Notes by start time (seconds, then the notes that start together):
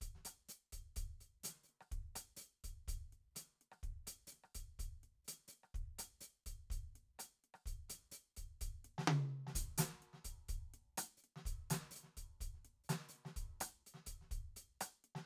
0.01 closed hi-hat, kick
0.15 snare
0.25 closed hi-hat, cross-stick
0.49 hi-hat pedal
0.72 closed hi-hat, kick
0.96 closed hi-hat, kick
1.21 closed hi-hat
1.44 closed hi-hat, snare, hi-hat pedal
1.63 hi-hat pedal
1.69 closed hi-hat
1.80 cross-stick, snare
1.91 kick, closed hi-hat
2.15 closed hi-hat, cross-stick
2.37 closed hi-hat, hi-hat pedal
2.64 closed hi-hat, kick
2.88 closed hi-hat, kick
3.12 closed hi-hat
3.36 closed hi-hat, snare
3.61 closed hi-hat
3.71 cross-stick, snare
3.83 kick, closed hi-hat
4.07 closed hi-hat, cross-stick
4.27 hi-hat pedal
4.32 snare, closed hi-hat
4.44 cross-stick
4.55 closed hi-hat, kick
4.79 closed hi-hat, kick
5.03 closed hi-hat
5.25 closed hi-hat, snare, hi-hat pedal
5.48 hi-hat pedal
5.53 closed hi-hat
5.63 cross-stick
5.74 kick, closed hi-hat
5.99 closed hi-hat, cross-stick
6.21 closed hi-hat, hi-hat pedal
6.46 closed hi-hat, kick
6.70 closed hi-hat, kick
6.96 closed hi-hat
7.18 closed hi-hat, cross-stick, snare
7.44 closed hi-hat
7.54 cross-stick, snare
7.66 closed hi-hat, kick
7.89 closed hi-hat, snare
8.12 closed hi-hat, hi-hat pedal
8.37 closed hi-hat, kick
8.61 closed hi-hat, kick
8.85 closed hi-hat
8.98 snare
9.08 high tom
9.47 snare
9.55 closed hi-hat, kick
9.61 kick
9.78 open hi-hat, snare
10.02 closed hi-hat
10.13 snare
10.25 closed hi-hat, kick
10.49 closed hi-hat, kick
10.74 closed hi-hat
10.98 closed hi-hat, cross-stick
11.17 hi-hat pedal
11.24 closed hi-hat
11.36 snare
11.45 closed hi-hat, kick
11.70 closed hi-hat, snare
11.91 hi-hat pedal
11.96 closed hi-hat
12.03 snare
12.17 closed hi-hat, kick
12.40 closed hi-hat, kick
12.54 snare
12.65 closed hi-hat
12.84 hi-hat pedal
12.89 closed hi-hat, snare
13.09 hi-hat pedal
13.15 closed hi-hat
13.25 snare
13.36 closed hi-hat, kick
13.61 closed hi-hat, cross-stick
13.86 closed hi-hat
13.94 snare
14.06 closed hi-hat, kick
14.21 snare
14.27 snare
14.29 closed hi-hat, kick, snare
14.56 closed hi-hat
14.81 closed hi-hat, cross-stick
15.04 closed hi-hat
15.15 snare